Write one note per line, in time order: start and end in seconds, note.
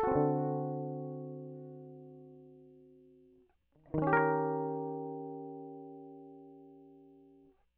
0.00 3.49 F#4
0.00 1.98 A4
0.08 3.46 C4
0.17 3.01 D3
3.96 6.16 D#3
4.03 7.54 C#4
4.08 7.57 G4
4.14 6.86 A#4
4.18 4.25 C#5